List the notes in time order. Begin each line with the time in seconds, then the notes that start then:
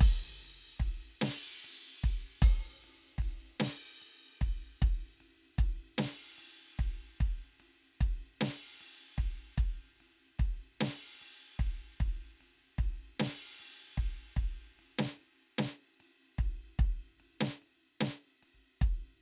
0.01 kick, ride, crash
0.45 ride
0.80 kick, ride
1.22 snare, crash
1.65 ride
2.04 kick, ride
2.42 kick, ride, percussion
2.84 ride
3.19 kick, ride
3.56 hi-hat pedal
3.60 snare, crash
4.02 ride
4.42 kick, ride
4.82 kick, ride
5.21 ride
5.59 kick, ride
5.98 snare, crash
6.38 ride
6.79 kick, ride
7.21 kick, ride
7.60 ride
8.01 kick, ride
8.41 snare, crash
8.81 ride
9.18 kick, ride
9.58 kick, ride
10.01 ride
10.39 kick, ride
10.81 snare, crash
11.22 ride
11.60 kick, ride
12.01 kick, ride
12.41 ride
12.79 kick, ride
13.20 snare, crash
13.60 ride
13.98 kick, ride
14.37 kick, ride
14.79 ride
14.99 snare
15.13 snare
15.17 ride
15.59 snare, ride
16.00 ride
16.39 kick, ride
16.79 kick, ride
17.20 ride
17.41 snare
17.55 snare
17.62 ride
18.01 snare, ride
18.43 ride
18.55 kick
18.82 kick, ride